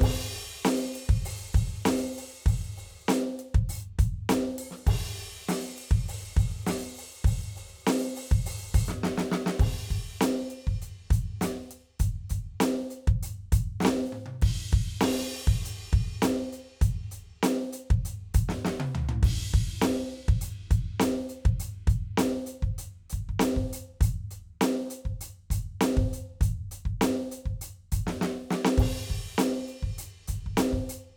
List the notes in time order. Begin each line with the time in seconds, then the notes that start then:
0.01 kick, crash
0.33 open hi-hat
0.65 open hi-hat, snare
0.95 open hi-hat
1.09 kick
1.25 open hi-hat
1.54 open hi-hat, kick
1.85 open hi-hat, snare
2.17 open hi-hat
2.46 open hi-hat, kick
2.77 open hi-hat
3.08 open hi-hat, snare
3.39 closed hi-hat
3.54 kick
3.69 open hi-hat
3.99 open hi-hat, kick
4.29 closed hi-hat, snare
4.58 open hi-hat
4.71 snare
4.87 kick, crash
5.05 snare
5.10 snare
5.18 open hi-hat
5.49 open hi-hat, snare
5.78 open hi-hat
5.91 kick
6.08 open hi-hat
6.37 open hi-hat, kick
6.67 open hi-hat, snare
6.98 open hi-hat
7.24 open hi-hat, kick
7.56 open hi-hat
7.87 open hi-hat, snare
8.16 open hi-hat
8.31 kick
8.46 open hi-hat
8.74 open hi-hat, kick
8.88 snare, hi-hat pedal
9.04 snare
9.16 snare, hi-hat pedal
9.32 snare
9.46 snare
9.60 kick, crash
9.90 closed hi-hat, kick
10.21 closed hi-hat, snare
10.50 closed hi-hat
10.67 kick, snare
10.82 closed hi-hat
11.11 closed hi-hat, kick
11.41 closed hi-hat, snare
11.71 closed hi-hat
12.00 closed hi-hat, kick
12.30 closed hi-hat, kick
12.60 closed hi-hat, snare
12.90 closed hi-hat
13.07 kick
13.23 closed hi-hat
13.52 closed hi-hat, kick
13.80 snare
13.85 snare, hi-hat pedal
14.06 hi-hat pedal
14.12 mid tom
14.26 high tom
14.42 kick, ride
14.73 kick
15.01 snare, crash
15.27 closed hi-hat
15.47 kick
15.65 closed hi-hat
15.93 kick
16.22 closed hi-hat, snare
16.53 closed hi-hat
16.81 closed hi-hat, kick
17.11 closed hi-hat
17.43 closed hi-hat, snare
17.73 closed hi-hat
17.90 kick
18.05 closed hi-hat
18.34 closed hi-hat, kick
18.49 snare
18.65 snare
18.80 high tom
18.95 floor tom
19.09 mid tom
19.23 kick, ride
19.54 kick, snare
19.82 snare, ride
20.28 kick
20.41 closed hi-hat
20.71 closed hi-hat, kick
21.00 closed hi-hat, snare
21.29 closed hi-hat
21.45 kick
21.60 closed hi-hat
21.87 closed hi-hat, kick
22.18 closed hi-hat, snare
22.46 closed hi-hat
22.62 kick
22.78 closed hi-hat
23.10 closed hi-hat, kick
23.29 kick
23.39 closed hi-hat, snare
23.56 kick
23.73 closed hi-hat
24.01 closed hi-hat, kick
24.31 closed hi-hat
24.61 closed hi-hat, snare
24.87 closed hi-hat, snare
25.05 kick
25.21 closed hi-hat
25.50 closed hi-hat, kick
25.81 closed hi-hat, snare
25.97 kick
26.13 closed hi-hat
26.41 closed hi-hat, kick
26.71 closed hi-hat
26.85 kick
27.01 closed hi-hat, snare
27.32 closed hi-hat
27.46 kick
27.61 closed hi-hat
27.92 closed hi-hat, kick
28.07 snare
28.21 snare
28.51 snare
28.65 snare
28.78 kick, crash
29.10 kick
29.38 closed hi-hat, snare
29.68 closed hi-hat
29.82 kick, snare
29.98 closed hi-hat
30.28 closed hi-hat, kick
30.46 kick
30.57 closed hi-hat, snare
30.73 kick
30.89 closed hi-hat